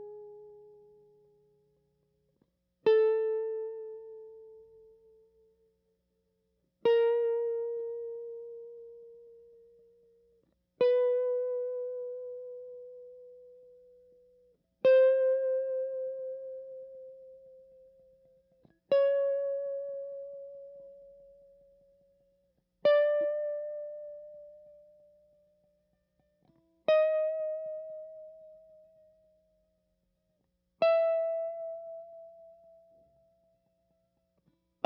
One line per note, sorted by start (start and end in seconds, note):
2.88 5.34 A4
6.86 10.11 A#4
10.81 14.51 B4
14.85 18.42 C5
18.92 22.16 C#5
22.85 25.57 D5
26.88 29.44 D#5
30.82 33.56 E5